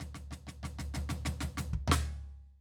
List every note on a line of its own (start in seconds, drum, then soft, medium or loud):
0.00 snare soft
0.00 floor tom medium
0.14 snare soft
0.14 floor tom soft
0.31 snare soft
0.31 floor tom medium
0.47 snare soft
0.47 floor tom soft
0.63 snare medium
0.63 floor tom medium
0.79 snare medium
0.79 floor tom medium
0.94 snare medium
0.94 floor tom medium
1.09 snare medium
1.09 floor tom medium
1.25 snare medium
1.25 floor tom medium
1.40 snare medium
1.40 floor tom medium
1.57 snare medium
1.57 floor tom medium
1.57 hi-hat pedal medium
1.73 kick medium
1.88 snare loud
1.88 floor tom loud